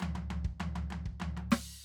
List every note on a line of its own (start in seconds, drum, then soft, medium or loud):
0.00 floor tom loud
0.00 hi-hat pedal soft
0.00 high tom medium
0.15 floor tom medium
0.15 high tom medium
0.30 floor tom medium
0.30 high tom medium
0.44 kick medium
0.60 floor tom medium
0.60 high tom medium
0.75 floor tom medium
0.75 high tom medium
0.90 floor tom medium
0.90 high tom medium
1.06 kick soft
1.20 floor tom medium
1.20 high tom medium
1.37 floor tom soft
1.37 high tom medium
1.51 snare loud
1.51 crash medium